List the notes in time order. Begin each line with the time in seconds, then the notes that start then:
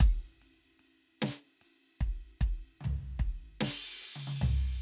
0.01 kick, ride, percussion
0.42 ride
0.80 ride
1.21 snare, hi-hat pedal, ride
1.62 ride
2.01 kick, ride
2.42 kick, ride
2.81 floor tom, high tom
3.20 kick, ride
3.61 snare, crash
4.01 hi-hat pedal
4.16 high tom
4.28 high tom
4.42 floor tom, hi-hat pedal